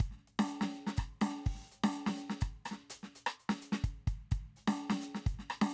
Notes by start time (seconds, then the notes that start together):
0.00 closed hi-hat, kick
0.09 kick, snare
0.17 snare
0.27 closed hi-hat
0.39 snare
0.47 hi-hat pedal
0.51 closed hi-hat
0.61 snare
0.73 closed hi-hat
0.86 snare
0.96 closed hi-hat, kick, cross-stick, hi-hat pedal
1.21 closed hi-hat, snare
1.28 snare
1.46 open hi-hat, kick
1.55 snare
1.61 snare
1.71 closed hi-hat
1.84 snare
1.96 closed hi-hat
2.06 snare
2.16 closed hi-hat, hi-hat pedal
2.30 snare
2.41 closed hi-hat, kick, cross-stick
2.65 closed hi-hat, cross-stick
2.71 snare
2.90 closed hi-hat
3.03 snare
3.15 closed hi-hat
3.26 cross-stick
3.39 closed hi-hat
3.49 snare
3.56 hi-hat pedal
3.62 closed hi-hat
3.72 snare
3.84 closed hi-hat, kick
4.07 closed hi-hat, kick
4.15 kick
4.31 closed hi-hat, kick, snare
4.38 snare
4.56 open hi-hat, hi-hat pedal
4.67 snare
4.80 closed hi-hat
4.90 snare
5.01 closed hi-hat, hi-hat pedal
5.15 snare
5.26 closed hi-hat, kick
5.34 kick
5.39 snare
5.50 cross-stick
5.61 snare